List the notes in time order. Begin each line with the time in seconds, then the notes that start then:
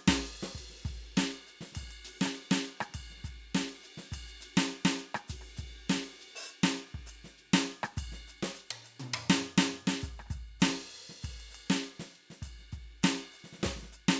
0.08 kick, snare, hi-hat pedal, crash
0.15 kick
0.43 snare
0.55 kick, hi-hat pedal, ride
0.70 snare
0.75 snare
0.78 snare
0.86 kick, hi-hat pedal, ride
0.95 kick
1.17 snare, hi-hat pedal, ride bell
1.47 hi-hat pedal, ride
1.61 snare
1.73 snare, ride bell
1.77 kick, hi-hat pedal
1.82 kick, snare
1.88 snare, ride bell
2.05 hi-hat pedal, ride
2.22 snare
2.26 cross-stick
2.35 hi-hat pedal, ride
2.52 snare
2.64 hi-hat pedal, ride
2.81 cross-stick
2.90 snare
2.94 kick, hi-hat pedal, ride bell
3.11 snare
3.18 snare
3.25 kick, hi-hat pedal, ride
3.33 kick
3.55 snare, hi-hat pedal, ride
3.64 snare
3.84 hi-hat pedal, ride
3.98 snare
4.12 kick, snare, hi-hat pedal, ride bell
4.21 snare
4.25 snare, ride
4.41 hi-hat pedal, ride
4.58 snare
4.68 hi-hat pedal
4.73 ride
4.86 snare
4.98 hi-hat pedal
5.02 ride
5.15 cross-stick
5.28 kick, snare, hi-hat pedal, ride
5.42 cross-stick
5.57 kick, hi-hat pedal, ride
5.68 kick
5.89 snare, hi-hat pedal, ride
5.98 snare
6.20 hi-hat pedal, ride
6.35 open hi-hat
6.46 hi-hat pedal
6.50 ride
6.64 snare
6.79 ride
6.95 kick
7.07 hi-hat pedal, ride bell
7.25 snare
7.34 hi-hat pedal
7.38 ride
7.54 snare
7.65 hi-hat pedal
7.70 ride
7.84 cross-stick
7.97 kick, hi-hat pedal, ride bell
8.04 kick
8.08 kick
8.13 snare
8.21 kick
8.28 hi-hat pedal, ride
8.43 snare
8.55 hi-hat pedal
8.59 ride
8.71 mid tom
8.84 hi-hat pedal, ride bell
9.00 mid tom
9.14 hi-hat pedal, floor tom
9.30 snare
9.43 hi-hat pedal
9.58 snare
9.72 floor tom, hi-hat pedal
9.88 snare
10.02 kick, hi-hat pedal, ride bell
10.10 kick
10.13 kick
10.20 cross-stick
10.27 cross-stick, snare, hi-hat pedal
10.31 kick, ride bell
10.37 kick
10.40 kick
10.60 snare, hi-hat pedal, crash
10.69 snare
10.90 hi-hat pedal
10.95 ride
11.10 snare
11.23 kick, snare, hi-hat pedal, ride bell
11.30 kick, snare
11.40 ride bell
11.51 hi-hat pedal
11.55 ride bell
11.70 snare
11.81 hi-hat pedal
11.86 ride
12.00 snare
12.11 hi-hat pedal, ride
12.31 snare
12.42 kick, hi-hat pedal, ride bell
12.60 snare
12.72 kick, hi-hat pedal, ride
13.03 snare, hi-hat pedal, ride bell
13.13 snare
13.33 hi-hat pedal, ride bell
13.39 ride
13.44 snare
13.53 snare
13.60 snare
13.63 kick, snare, hi-hat pedal
13.72 kick
13.75 kick, snare
13.83 snare
13.93 hi-hat pedal, ride bell
14.09 snare